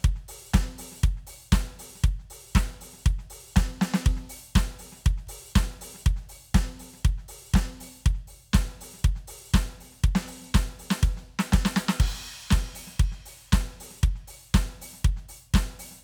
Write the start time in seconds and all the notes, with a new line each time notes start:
0.01 kick, hi-hat pedal
0.05 closed hi-hat
0.16 snare
0.21 snare
0.29 open hi-hat
0.50 snare, closed hi-hat, hi-hat pedal
0.54 kick
0.62 snare
0.79 open hi-hat
0.92 snare
0.96 snare, hi-hat pedal
1.04 kick, closed hi-hat
1.17 snare
1.27 open hi-hat
1.49 kick, snare, hi-hat pedal
1.53 closed hi-hat
1.60 snare
1.66 snare
1.70 kick
1.79 open hi-hat
1.95 snare
2.01 kick, hi-hat pedal
2.06 closed hi-hat
2.19 snare
2.25 snare
2.30 open hi-hat
2.52 kick, snare, hi-hat pedal
2.57 closed hi-hat
2.81 open hi-hat
2.93 snare
3.03 kick, closed hi-hat, hi-hat pedal
3.19 snare
3.30 open hi-hat
3.54 closed hi-hat, kick, snare, hi-hat pedal
3.82 snare
3.94 snare
4.04 kick, closed hi-hat, hi-hat pedal
4.17 snare
4.30 open hi-hat
4.53 kick, snare, closed hi-hat, hi-hat pedal
4.79 open hi-hat
4.92 snare
5.01 closed hi-hat, hi-hat pedal
5.06 kick
5.17 snare
5.27 open hi-hat, kick
5.51 hi-hat pedal
5.56 kick, snare, closed hi-hat
5.63 snare
5.73 snare
5.81 open hi-hat
5.95 snare
6.00 snare, hi-hat pedal
6.06 closed hi-hat, kick
6.16 snare
6.22 snare
6.29 open hi-hat
6.51 kick, snare, hi-hat pedal
6.55 closed hi-hat
6.70 snare
6.79 open hi-hat
6.93 snare
6.99 hi-hat pedal
7.05 closed hi-hat, kick
7.18 snare
7.29 open hi-hat
7.51 kick, hi-hat pedal
7.56 closed hi-hat, snare
7.81 open hi-hat
8.03 closed hi-hat, kick, hi-hat pedal
8.15 snare
8.19 snare
8.28 open hi-hat
8.52 closed hi-hat, kick, snare, hi-hat pedal
8.61 snare
8.81 open hi-hat
8.94 snare
8.99 hi-hat pedal
9.05 kick, closed hi-hat
9.16 snare
9.28 open hi-hat
9.51 kick, snare, closed hi-hat, hi-hat pedal
9.81 open hi-hat
9.92 snare
9.99 hi-hat pedal
10.04 kick, closed hi-hat
10.15 snare
10.28 open hi-hat
10.49 hi-hat pedal
10.54 closed hi-hat, kick, snare
10.79 open hi-hat
10.91 snare
10.97 snare, hi-hat pedal
11.03 kick, closed hi-hat
11.17 snare
11.39 snare
11.51 kick, snare, hi-hat pedal
11.65 snare
11.76 snare
11.89 snare
11.98 kick, hi-hat pedal, crash
12.14 snare
12.51 kick, snare
12.58 snare
12.75 open hi-hat
12.87 snare
12.96 hi-hat pedal
13.00 kick, closed hi-hat
13.12 snare
13.26 open hi-hat
13.48 hi-hat pedal
13.53 kick, snare, closed hi-hat
13.61 snare
13.80 open hi-hat
13.91 snare
13.98 hi-hat pedal
14.03 kick, closed hi-hat
14.16 snare
14.28 open hi-hat
14.50 hi-hat pedal
14.54 kick, snare, closed hi-hat
14.82 open hi-hat
14.94 snare
15.00 hi-hat pedal
15.05 kick, closed hi-hat
15.17 snare
15.29 open hi-hat
15.50 kick, hi-hat pedal
15.55 snare, closed hi-hat
15.71 snare
15.79 open hi-hat
15.91 snare
15.94 snare
16.00 hi-hat pedal